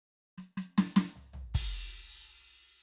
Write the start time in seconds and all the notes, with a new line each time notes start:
0.38 snare
0.58 snare
0.78 snare
0.97 snare
1.16 floor tom
1.34 floor tom
1.55 kick, crash